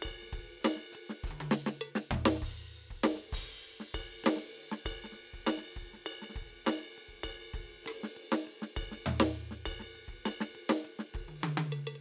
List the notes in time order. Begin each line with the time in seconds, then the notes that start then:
0.01 hi-hat pedal, ride bell
0.05 kick
0.11 kick
0.22 snare
0.28 snare
0.33 kick, ride
0.39 kick
0.43 kick
0.61 snare, hi-hat pedal, ride bell
0.76 snare
0.93 hi-hat pedal, ride
1.10 snare
1.24 kick, hi-hat pedal
1.31 kick, high tom
1.38 kick, high tom
1.51 snare
1.67 snare
1.81 percussion
1.96 snare
2.11 kick, floor tom
2.26 snare
2.35 snare
2.42 kick, crash
2.57 cross-stick
2.91 kick
3.04 snare, hi-hat pedal, ride
3.16 snare
3.33 kick, crash
3.47 kick
3.80 snare
3.94 kick, ride bell
4.01 kick
4.24 snare, hi-hat pedal, ride
4.37 snare
4.55 ride
4.72 snare
4.85 kick, hi-hat pedal, ride bell
4.96 kick
5.04 snare
5.12 snare
5.17 ride
5.34 kick
5.47 snare, hi-hat pedal, ride bell
5.58 snare
5.76 kick, ride
5.82 kick
5.94 snare
6.06 hi-hat pedal, ride bell
6.22 snare
6.30 snare
6.35 kick, ride
6.42 kick
6.65 snare, hi-hat pedal, ride bell
6.98 ride
7.09 kick
7.13 snare
7.18 snare
7.23 kick, hi-hat pedal, ride bell
7.54 kick, ride
7.84 cross-stick, hi-hat pedal, ride
8.04 snare
8.17 ride
8.32 snare
8.44 hi-hat pedal, ride
8.62 snare
8.77 kick, ride bell
8.85 kick
8.88 kick
8.92 snare
9.06 hi-hat pedal, floor tom
9.20 snare
9.36 ride
9.51 snare
9.66 kick, hi-hat pedal, ride bell
9.73 kick
9.80 snare
9.95 ride
10.08 kick
10.26 snare, hi-hat pedal, ride bell
10.41 snare
10.55 ride
10.70 snare
10.84 hi-hat pedal, ride
10.99 snare
11.14 kick, ride
11.22 kick
11.29 high tom
11.41 hi-hat pedal, high tom
11.58 high tom
11.72 percussion
11.87 percussion
11.96 percussion